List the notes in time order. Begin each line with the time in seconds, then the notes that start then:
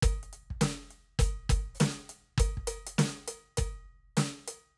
0.03 kick, closed hi-hat
0.23 closed hi-hat
0.33 closed hi-hat
0.50 kick
0.61 snare, closed hi-hat
0.91 closed hi-hat
1.19 closed hi-hat, kick
1.49 kick, closed hi-hat
1.75 hi-hat pedal
1.80 snare, closed hi-hat
2.09 closed hi-hat
2.38 kick, closed hi-hat
2.57 kick
2.67 closed hi-hat
2.87 closed hi-hat
2.98 snare, closed hi-hat
3.28 closed hi-hat
3.57 kick, closed hi-hat
4.17 closed hi-hat, snare
4.48 closed hi-hat